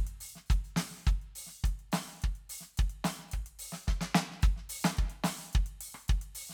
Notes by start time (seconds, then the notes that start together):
0.07 closed hi-hat
0.20 open hi-hat
0.35 snare
0.46 hi-hat pedal
0.50 kick, closed hi-hat
0.64 closed hi-hat
0.76 open hi-hat, snare
0.91 snare
0.94 snare
1.04 kick, closed hi-hat, hi-hat pedal
1.22 closed hi-hat
1.35 open hi-hat
1.46 snare
1.61 kick, snare, hi-hat pedal
1.65 closed hi-hat
1.79 closed hi-hat
1.92 open hi-hat, snare
2.07 snare
2.20 closed hi-hat, hi-hat pedal
2.24 kick
2.35 closed hi-hat
2.49 open hi-hat
2.61 snare
2.73 hi-hat pedal
2.77 kick, closed hi-hat
2.90 closed hi-hat
3.04 open hi-hat, snare
3.19 snare
3.28 snare, closed hi-hat, hi-hat pedal
3.33 kick
3.46 closed hi-hat
3.59 open hi-hat, kick
3.72 snare
3.84 kick, snare, hi-hat pedal
4.01 snare
4.14 kick, snare
4.31 snare
4.40 kick, closed hi-hat, hi-hat pedal
4.56 snare
4.69 open hi-hat
4.84 snare
4.93 hi-hat pedal
4.97 kick, closed hi-hat
5.10 closed hi-hat
5.24 open hi-hat, snare
5.38 snare
5.48 hi-hat pedal
5.53 kick, closed hi-hat
5.66 closed hi-hat
5.81 open hi-hat
5.94 cross-stick
6.03 hi-hat pedal
6.08 kick, closed hi-hat
6.21 closed hi-hat
6.35 open hi-hat
6.49 snare